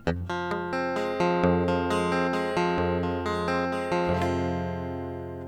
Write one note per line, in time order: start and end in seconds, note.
0.08 0.30 F2
0.08 0.21 C3
0.31 1.17 F3
0.53 0.63 G#3
0.74 2.10 C4
0.98 1.89 G#3
1.21 1.67 F3
1.45 2.78 F2
1.69 2.54 F3
1.92 2.31 G#3
2.13 3.46 C4
2.35 3.24 G#3
2.58 3.01 F3
2.79 4.11 F2
3.05 3.92 F3
3.27 3.69 G#3
3.49 5.48 C4
3.74 4.18 G#3
3.93 4.16 F3
4.11 5.48 F2
4.11 5.48 C3
4.17 5.48 F3
4.17 5.48 G#3
4.23 5.48 F4